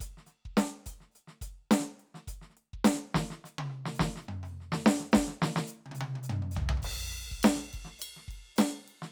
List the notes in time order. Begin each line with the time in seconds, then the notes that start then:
0.01 closed hi-hat, kick
0.07 kick
0.18 snare
0.27 closed hi-hat, snare
0.46 kick
0.58 closed hi-hat, snare
0.86 open hi-hat, kick
1.01 snare
1.12 closed hi-hat, hi-hat pedal
1.28 snare
1.42 closed hi-hat, kick
1.48 kick
1.71 closed hi-hat, snare
1.80 snare
2.00 closed hi-hat
2.15 snare
2.28 closed hi-hat, kick
2.34 kick
2.42 snare
2.50 snare
2.57 closed hi-hat
2.74 kick
2.85 closed hi-hat, snare
2.95 snare
3.15 kick, snare
3.31 snare
3.45 snare, hi-hat pedal
3.59 high tom
3.70 cross-stick
3.86 snare
3.95 hi-hat pedal
4.00 kick, snare
4.08 kick
4.11 kick
4.16 snare
4.22 kick, hi-hat pedal
4.29 mid tom
4.44 hi-hat pedal, open hi-hat, high tom
4.61 snare
4.73 snare
4.87 snare
5.00 snare
5.12 snare, hi-hat pedal
5.17 kick
5.26 kick, snare
5.42 snare
5.57 snare
5.68 hi-hat pedal
5.86 high tom
5.92 hi-hat pedal, high tom
6.01 high tom
6.16 high tom
6.24 hi-hat pedal
6.30 mid tom
6.43 mid tom
6.52 hi-hat pedal
6.56 kick, floor tom
6.70 floor tom
6.78 floor tom
6.83 kick, hi-hat pedal, crash
7.10 snare
7.32 kick
7.40 kick, ride bell
7.45 snare, hi-hat pedal
7.56 snare
7.73 kick, ride
7.80 kick
7.85 snare
7.99 hi-hat pedal, ride bell
8.17 snare
8.28 kick, ride
8.34 kick
8.56 snare, hi-hat pedal, ride bell
8.88 ride
9.03 snare